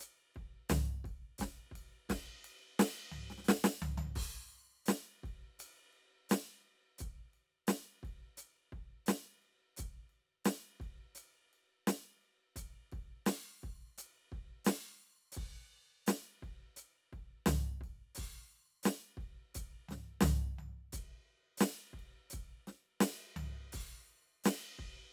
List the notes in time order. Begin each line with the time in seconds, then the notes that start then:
0.01 hi-hat pedal, ride
0.36 kick, ride
0.70 snare, floor tom, hi-hat pedal
1.05 kick, ride
1.39 kick, snare, hi-hat pedal, ride
1.72 kick
1.76 ride
2.10 kick, snare, ride
2.45 ride
2.80 snare, hi-hat pedal, ride
3.12 floor tom
3.31 snare
3.39 snare
3.45 snare, hi-hat pedal
3.49 snare
3.65 snare
3.83 floor tom
3.98 floor tom
4.16 kick, crash
4.50 ride
4.87 snare, hi-hat pedal, ride
5.24 kick, ride
5.60 hi-hat pedal, ride
5.94 ride
6.30 snare, hi-hat pedal, ride
6.99 kick, hi-hat pedal, ride
7.34 ride
7.68 snare, hi-hat pedal, ride
8.04 kick, ride
8.38 hi-hat pedal, ride
8.73 kick, ride
9.07 snare, hi-hat pedal, ride
9.43 ride
9.77 kick, hi-hat pedal, ride
10.10 ride
10.45 snare, hi-hat pedal, ride
10.81 kick, ride
11.16 hi-hat pedal, ride
11.54 ride
11.88 snare, hi-hat pedal, ride
12.22 ride
12.57 kick, hi-hat pedal, ride
12.93 kick, ride
13.27 snare, hi-hat pedal, crash
13.63 kick, ride
13.99 hi-hat pedal, ride
14.33 kick, ride
14.66 snare, hi-hat pedal, crash
15.00 ride
15.33 hi-hat pedal, crash
15.37 kick
16.07 snare, hi-hat pedal, ride
16.43 kick, ride
16.77 hi-hat pedal, ride
17.14 kick, ride
17.47 snare, floor tom, hi-hat pedal
17.82 kick, ride
18.16 kick, hi-hat pedal, crash
18.84 snare, hi-hat pedal, ride
19.18 kick, ride
19.55 kick, hi-hat pedal, ride
19.90 snare, floor tom
20.22 snare, floor tom
20.26 hi-hat pedal
20.59 floor tom
20.93 kick, hi-hat pedal, ride
21.58 snare, hi-hat pedal, ride
21.94 kick
22.00 ride
22.31 kick, hi-hat pedal, ride
22.68 snare, ride
23.01 snare, hi-hat pedal, ride
23.37 floor tom, ride
23.73 kick, hi-hat pedal, crash
24.45 snare, hi-hat pedal, ride
24.80 kick